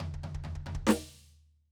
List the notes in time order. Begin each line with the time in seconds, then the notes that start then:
0.00 floor tom, high tom
0.14 kick
0.23 floor tom, high tom
0.35 kick
0.44 floor tom, high tom
0.55 kick
0.66 floor tom, high tom
0.75 kick
0.87 snare
0.89 snare